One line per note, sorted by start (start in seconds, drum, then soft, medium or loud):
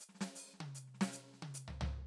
0.00 hi-hat pedal medium
0.09 snare soft
0.15 snare soft
0.21 snare medium
0.35 hi-hat pedal medium
0.47 snare soft
0.53 snare soft
0.60 high tom medium
0.75 hi-hat pedal medium
0.87 snare soft
0.94 snare soft
1.01 snare medium
1.12 hi-hat pedal loud
1.27 snare soft
1.33 snare soft
1.42 high tom medium
1.54 hi-hat pedal loud
1.68 floor tom medium
1.81 floor tom loud